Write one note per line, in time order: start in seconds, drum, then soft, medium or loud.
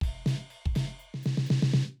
0.01 kick medium
0.01 ride medium
0.26 snare loud
0.26 ride medium
0.50 ride medium
0.66 kick medium
0.75 snare loud
0.75 ride medium
0.99 hi-hat pedal medium
1.14 snare medium
1.23 snare loud
1.23 hi-hat pedal medium
1.38 snare loud
1.46 hi-hat pedal medium
1.50 snare loud
1.62 snare loud
1.74 snare loud